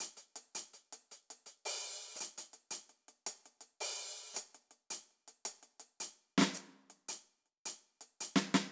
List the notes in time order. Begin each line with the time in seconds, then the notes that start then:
0.01 closed hi-hat
0.18 closed hi-hat
0.36 closed hi-hat
0.56 closed hi-hat
0.74 closed hi-hat
0.93 closed hi-hat
1.12 closed hi-hat
1.31 closed hi-hat
1.47 closed hi-hat
1.66 open hi-hat
2.16 hi-hat pedal
2.21 closed hi-hat
2.39 closed hi-hat
2.54 closed hi-hat
2.71 closed hi-hat
2.90 closed hi-hat
3.09 closed hi-hat
3.27 closed hi-hat
3.46 closed hi-hat
3.61 closed hi-hat
3.81 open hi-hat
4.35 closed hi-hat, hi-hat pedal
4.55 closed hi-hat
4.72 closed hi-hat
4.91 closed hi-hat
5.11 closed hi-hat
5.29 closed hi-hat
5.46 closed hi-hat
5.64 closed hi-hat
5.80 closed hi-hat
6.01 open hi-hat
6.39 snare
6.42 snare
6.54 hi-hat pedal
6.91 closed hi-hat
7.09 closed hi-hat
7.46 closed hi-hat
7.66 closed hi-hat
8.02 closed hi-hat
8.21 closed hi-hat
8.36 snare
8.55 snare